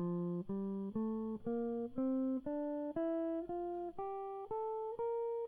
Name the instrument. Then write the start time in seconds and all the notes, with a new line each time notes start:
electric guitar
0.00 F3
0.50 G3
0.96 A3
1.47 A#3
1.99 C4
2.47 D4
2.97 E4
3.50 F4
3.99 G4
4.51 A4
4.93 A#4
5.00 A#4